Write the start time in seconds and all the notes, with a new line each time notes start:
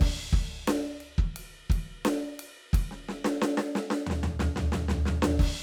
0.01 kick, crash, ride
0.33 kick, snare
0.68 snare, ride
1.01 ride
1.18 kick
1.36 ride
1.70 kick, ride
2.05 snare, ride
2.39 ride
2.73 kick, ride
2.91 snare
3.09 snare
3.25 snare
3.42 snare
3.58 snare
3.75 snare
3.90 snare
4.07 snare, floor tom
4.23 snare, floor tom
4.40 snare, floor tom
4.56 snare, floor tom
4.72 snare, floor tom, hi-hat pedal
4.89 snare, floor tom
5.06 snare, floor tom
5.22 snare, floor tom
5.39 kick, crash, ride